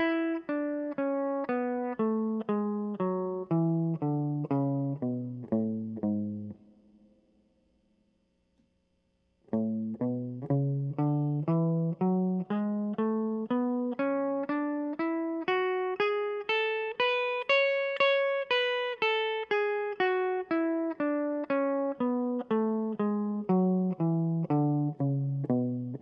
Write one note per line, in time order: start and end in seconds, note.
0.00 0.42 E4
0.50 0.96 D4
0.99 1.48 C#4
1.50 1.96 B3
2.00 2.46 A3
2.49 2.99 G#3
3.01 3.47 F#3
3.52 3.99 E3
4.03 4.49 D3
4.52 4.98 C#3
5.04 5.49 B2
5.54 6.03 A2
6.05 6.55 G#2
9.55 9.99 A2
10.03 10.48 B2
10.52 10.96 C#3
11.00 11.45 D3
11.49 11.96 E3
12.02 12.46 F#3
12.51 12.98 G#3
12.99 13.49 A3
13.51 13.97 B3
14.00 14.47 C#4
14.50 14.97 D4
15.00 15.46 E4
15.48 15.97 F#4
16.00 16.45 G#4
16.50 16.97 A4
17.00 17.45 B4
17.50 18.00 C#5
18.01 18.46 C#5
18.51 18.97 B4
19.02 19.47 A4
19.52 19.96 G#4
20.01 20.44 F#4
20.52 20.95 E4
21.01 21.47 D4
21.51 21.95 C#4
22.01 22.44 B3
22.51 22.98 A3
23.00 23.44 G#3
23.50 23.96 F#3
24.01 24.49 E3
24.51 24.92 D3
25.02 25.49 C#3
25.51 26.02 B2